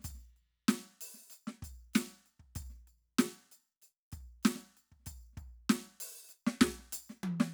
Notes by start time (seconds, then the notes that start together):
0.01 snare, percussion
0.05 kick, percussion
0.11 kick
0.15 snare
0.17 snare
0.37 percussion
0.69 snare, percussion
1.02 percussion
1.15 snare
1.20 snare
1.31 percussion
1.33 percussion
1.48 snare
1.63 kick, percussion
1.94 snare, percussion
2.27 percussion
2.40 kick
2.56 kick, percussion
2.63 kick
2.67 kick, snare
2.75 snare
2.88 percussion
3.19 snare, percussion
3.52 percussion
3.83 percussion
4.13 kick, percussion
4.21 kick
4.44 snare, percussion
4.46 percussion
4.56 snare
4.78 percussion
4.93 kick
5.00 snare
5.03 snare
5.06 kick, snare, percussion
5.34 snare
5.38 kick, percussion
5.70 snare, percussion
5.83 snare
6.01 percussion
6.30 percussion
6.48 snare
6.62 kick, snare
6.80 snare
6.93 percussion
7.10 snare
7.24 high tom
7.41 snare